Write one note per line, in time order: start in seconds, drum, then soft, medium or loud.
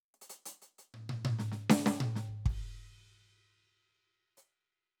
0.14 closed hi-hat soft
0.21 closed hi-hat medium
0.30 closed hi-hat medium
0.46 closed hi-hat loud
0.62 closed hi-hat medium
0.78 closed hi-hat medium
0.94 high tom medium
1.09 high tom medium
1.25 high tom loud
1.39 snare medium
1.52 snare soft
1.70 snare loud
1.86 snare medium
2.00 high tom loud
2.15 snare medium
2.29 kick soft
2.46 kick medium
2.46 crash soft
4.37 hi-hat pedal soft